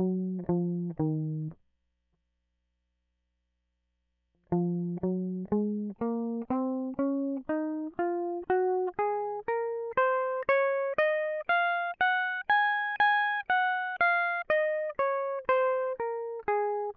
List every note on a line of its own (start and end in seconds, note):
0.00 0.47 F#3
0.51 0.95 F3
1.01 1.53 D#3
4.54 5.02 F3
5.05 5.49 F#3
5.54 5.95 G#3
6.03 6.47 A#3
6.52 6.98 C4
7.00 7.42 C#4
7.50 7.92 D#4
8.00 8.46 F4
8.51 8.92 F#4
9.00 9.44 G#4
9.49 9.95 A#4
9.98 10.46 C5
10.50 10.97 C#5
10.99 11.45 D#5
11.50 11.95 F5
12.02 12.45 F#5
12.50 13.00 G#5
13.01 13.45 G#5
13.50 14.00 F#5
14.01 14.45 F5
14.51 14.94 D#5
15.00 15.44 C#5
15.50 15.97 C5
16.01 16.44 A#4
16.49 16.93 G#4